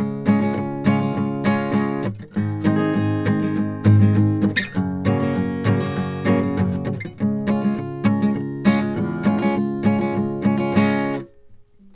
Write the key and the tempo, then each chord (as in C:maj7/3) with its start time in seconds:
C# major, 100 BPM
0.00 C#:maj6
2.35 G#:maj
4.75 F#:maj
7.15 C#:maj6(#9)/b3